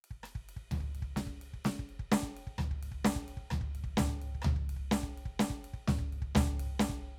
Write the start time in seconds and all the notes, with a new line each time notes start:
0.04 ride
0.11 kick
0.23 cross-stick, ride
0.35 kick
0.49 ride
0.56 kick
0.71 floor tom, ride
0.80 kick
0.95 ride
1.02 kick
1.16 snare, ride
1.27 kick
1.42 ride
1.54 kick
1.65 snare, ride
1.79 kick
1.89 ride
1.99 kick
2.12 snare, ride
2.23 kick
2.37 ride
2.47 kick
2.58 cross-stick, floor tom
2.71 kick
2.83 ride
2.92 kick
3.05 snare, ride
3.16 kick
3.28 ride
3.37 kick
3.50 cross-stick, floor tom
3.61 kick
3.75 ride
3.84 kick
3.97 snare, floor tom
4.09 kick
4.22 ride
4.35 kick
4.42 cross-stick, floor tom
4.56 kick
4.69 ride
4.76 kick
4.91 snare, ride
5.03 kick
5.18 ride
5.25 kick
5.39 snare, ride
5.50 kick
5.64 ride
5.74 kick
5.88 snare, floor tom
5.99 kick
6.13 ride
6.22 kick
6.35 snare, floor tom
6.47 kick
6.60 ride
6.66 kick
6.79 snare, ride
6.89 kick